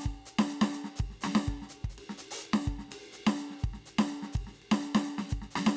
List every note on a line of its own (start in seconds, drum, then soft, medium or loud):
0.01 hi-hat pedal loud
0.05 kick soft
0.05 ride bell medium
0.12 kick soft
0.15 kick soft
0.26 hi-hat pedal loud
0.26 ride medium
0.39 snare loud
0.49 hi-hat pedal loud
0.49 ride soft
0.62 snare loud
0.73 hi-hat pedal loud
0.73 ride medium
0.84 snare medium
0.96 kick soft
0.96 hi-hat pedal loud
0.96 ride loud
1.06 kick soft
1.10 kick soft
1.10 snare soft
1.21 snare loud
1.21 hi-hat pedal loud
1.35 snare loud
1.44 hi-hat pedal medium
1.48 kick soft
1.48 ride medium
1.54 kick soft
1.57 kick soft
1.62 snare soft
1.69 hi-hat pedal loud
1.69 ride medium
1.82 kick soft
1.82 snare soft
1.87 snare soft
1.90 snare soft
1.90 hi-hat pedal medium
1.98 ride loud
2.10 snare soft
2.18 hi-hat pedal medium
2.18 ride medium
2.31 open hi-hat loud
2.40 hi-hat pedal soft
2.46 ride medium
2.54 snare loud
2.64 kick soft
2.64 hi-hat pedal medium
2.69 ride bell soft
2.73 kick soft
2.79 snare soft
2.89 snare soft
2.89 hi-hat pedal medium
2.89 ride loud
3.13 hi-hat pedal medium
3.13 ride soft
3.27 snare loud
3.39 hi-hat pedal medium
3.39 ride soft
3.51 snare soft
3.59 hi-hat pedal soft
3.64 kick medium
3.64 ride medium
3.71 kick soft
3.71 snare soft
3.86 hi-hat pedal medium
3.86 ride medium
3.99 snare loud
4.07 hi-hat pedal medium
4.12 ride bell soft
4.23 snare medium
4.33 kick soft
4.33 hi-hat pedal medium
4.37 ride loud
4.42 kick soft
4.45 kick soft
4.45 snare soft
4.54 hi-hat pedal soft
4.62 ride medium
4.72 snare loud
4.81 hi-hat pedal loud
4.81 ride medium
4.95 snare loud
5.02 hi-hat pedal medium
5.08 ride medium
5.19 snare medium
5.29 kick soft
5.29 hi-hat pedal medium
5.29 ride bell medium
5.38 kick soft
5.41 kick soft
5.41 snare soft
5.51 hi-hat pedal medium
5.56 snare loud
5.67 snare loud